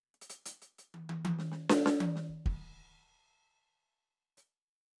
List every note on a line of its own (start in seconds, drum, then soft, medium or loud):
0.14 closed hi-hat soft
0.21 closed hi-hat medium
0.30 closed hi-hat medium
0.46 closed hi-hat loud
0.62 closed hi-hat medium
0.78 closed hi-hat medium
0.94 high tom medium
1.09 high tom medium
1.25 high tom loud
1.39 snare medium
1.52 snare soft
1.70 snare loud
1.86 snare medium
2.00 high tom loud
2.15 snare medium
2.29 kick soft
2.46 kick medium
2.46 crash soft
4.37 hi-hat pedal soft